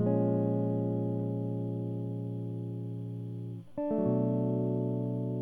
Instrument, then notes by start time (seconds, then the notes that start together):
electric guitar
0.00 A#2 F3 G#3
0.07 C#4
3.79 D4
3.92 A3
3.99 F#3
4.08 B2